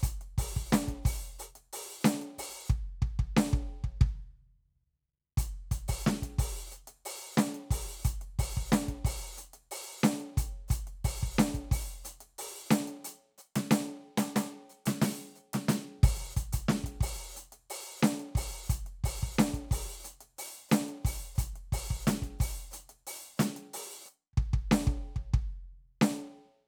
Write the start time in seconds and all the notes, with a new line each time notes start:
0.01 closed hi-hat, kick, hi-hat pedal
0.21 closed hi-hat
0.38 open hi-hat, kick
0.57 kick
0.70 closed hi-hat, snare, hi-hat pedal
0.88 kick, closed hi-hat
1.03 open hi-hat, kick, hi-hat pedal
1.39 open hi-hat, hi-hat pedal
1.56 closed hi-hat
1.73 open hi-hat
2.03 closed hi-hat, snare, hi-hat pedal
2.22 closed hi-hat
2.38 open hi-hat, kick
2.68 kick, hi-hat pedal
3.02 kick
3.07 kick, crash
3.19 kick
3.37 snare
3.53 kick
3.84 kick
3.97 kick
4.01 kick
5.38 closed hi-hat, kick
5.72 open hi-hat, kick
5.88 open hi-hat, kick
6.04 snare, hi-hat pedal
6.23 kick, closed hi-hat
6.39 open hi-hat, kick
6.71 closed hi-hat, hi-hat pedal
6.88 closed hi-hat
7.06 open hi-hat
7.35 closed hi-hat, snare, hi-hat pedal
7.55 closed hi-hat
7.71 open hi-hat, kick
8.03 closed hi-hat, kick, hi-hat pedal
8.22 closed hi-hat
8.39 open hi-hat, kick
8.57 kick
8.70 closed hi-hat, snare, hi-hat pedal
8.88 kick, closed hi-hat
9.05 open hi-hat, kick
9.37 closed hi-hat, hi-hat pedal
9.54 closed hi-hat
9.71 open hi-hat
10.01 closed hi-hat, snare, hi-hat pedal
10.20 closed hi-hat
10.38 open hi-hat, kick
10.68 closed hi-hat, kick, hi-hat pedal
10.87 closed hi-hat
11.05 open hi-hat, kick
11.23 kick
11.36 closed hi-hat, snare, hi-hat pedal
11.55 kick, closed hi-hat
11.72 open hi-hat, kick
12.04 closed hi-hat, hi-hat pedal
12.21 closed hi-hat
12.39 open hi-hat
12.70 closed hi-hat, snare, hi-hat pedal
12.88 closed hi-hat
13.05 open hi-hat
13.38 hi-hat pedal
13.56 snare, closed hi-hat
13.71 closed hi-hat, snare
14.18 closed hi-hat, snare
14.36 closed hi-hat, snare
14.70 hi-hat pedal
14.86 closed hi-hat, snare
15.02 open hi-hat, snare
15.36 hi-hat pedal
15.54 snare, closed hi-hat
15.69 open hi-hat, snare
15.99 kick
16.03 open hi-hat, kick
16.33 closed hi-hat, kick, hi-hat pedal
16.53 closed hi-hat, kick
16.69 snare
16.84 kick, closed hi-hat
17.01 open hi-hat, kick
17.34 closed hi-hat, hi-hat pedal
17.53 closed hi-hat
17.70 open hi-hat
18.00 closed hi-hat, snare, hi-hat pedal
18.20 closed hi-hat
18.35 open hi-hat, kick
18.67 closed hi-hat, kick, hi-hat pedal
18.87 closed hi-hat
19.04 open hi-hat, kick
19.23 kick
19.35 closed hi-hat, snare, hi-hat pedal
19.54 kick, closed hi-hat
19.69 open hi-hat, kick, hi-hat pedal
20.03 closed hi-hat, hi-hat pedal
20.21 closed hi-hat
20.37 open hi-hat, hi-hat pedal
20.69 closed hi-hat, snare, hi-hat pedal
20.88 closed hi-hat
21.03 open hi-hat, kick, hi-hat pedal
21.35 closed hi-hat, kick, hi-hat pedal
21.56 closed hi-hat
21.73 open hi-hat, kick
21.91 kick
22.04 closed hi-hat, snare, hi-hat pedal
22.22 kick, closed hi-hat
22.39 open hi-hat, kick, hi-hat pedal
22.72 closed hi-hat, hi-hat pedal
22.90 closed hi-hat
23.07 open hi-hat
23.38 closed hi-hat, snare, hi-hat pedal
23.57 closed hi-hat
23.74 open hi-hat
24.06 hi-hat pedal
24.33 kick
24.38 kick
24.54 kick
24.60 crash
24.72 snare
24.87 kick
25.16 kick
25.29 kick
25.34 kick
26.02 snare